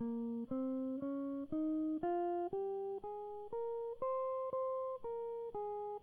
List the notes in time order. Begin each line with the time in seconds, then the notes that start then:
0.01 A#3
0.52 C4
1.03 C#4
1.53 D#4
2.03 F4
2.53 G4
3.04 G#4
3.53 A#4
4.02 C5
4.53 C5
5.05 A#4
5.55 G#4